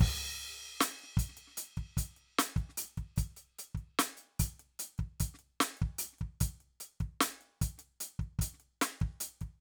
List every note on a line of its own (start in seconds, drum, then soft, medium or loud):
0.01 kick loud
0.01 crash loud
0.45 open hi-hat soft
0.81 closed hi-hat loud
0.81 snare loud
0.81 hi-hat pedal medium
1.00 closed hi-hat soft
1.04 snare soft
1.18 closed hi-hat medium
1.18 kick medium
1.30 snare soft
1.34 snare soft
1.34 closed hi-hat medium
1.48 snare soft
1.51 snare soft
1.56 snare soft
1.57 closed hi-hat loud
1.57 snare soft
1.61 snare soft
1.78 kick soft
1.78 closed hi-hat soft
1.98 closed hi-hat loud
1.98 kick medium
2.17 closed hi-hat soft
2.40 closed hi-hat loud
2.40 snare loud
2.57 kick medium
2.57 open hi-hat soft
2.70 snare soft
2.78 closed hi-hat loud
2.98 kick soft
2.98 closed hi-hat soft
3.17 closed hi-hat medium
3.17 kick medium
3.17 hi-hat pedal medium
3.37 closed hi-hat soft
3.60 closed hi-hat medium
3.76 kick soft
3.76 closed hi-hat soft
4.00 closed hi-hat loud
4.00 snare loud
4.18 closed hi-hat soft
4.40 closed hi-hat loud
4.40 kick medium
4.60 closed hi-hat soft
4.80 closed hi-hat loud
4.99 kick medium
4.99 closed hi-hat soft
5.21 closed hi-hat loud
5.21 kick medium
5.35 snare soft
5.40 closed hi-hat soft
5.61 closed hi-hat loud
5.61 snare loud
5.78 closed hi-hat soft
5.83 kick medium
5.99 closed hi-hat loud
6.14 snare soft
6.19 kick soft
6.19 closed hi-hat soft
6.41 closed hi-hat loud
6.41 kick medium
6.61 closed hi-hat soft
6.81 closed hi-hat medium
7.01 kick medium
7.01 closed hi-hat soft
7.22 closed hi-hat loud
7.22 snare loud
7.42 closed hi-hat soft
7.62 closed hi-hat loud
7.62 kick medium
7.79 snare soft
7.79 closed hi-hat medium
8.01 closed hi-hat loud
8.20 kick medium
8.20 closed hi-hat soft
8.40 closed hi-hat loud
8.40 kick medium
8.54 snare soft
8.61 closed hi-hat soft
8.82 closed hi-hat loud
8.82 snare loud
9.01 kick medium
9.01 closed hi-hat soft
9.21 closed hi-hat loud
9.21 snare soft
9.42 kick soft
9.42 closed hi-hat soft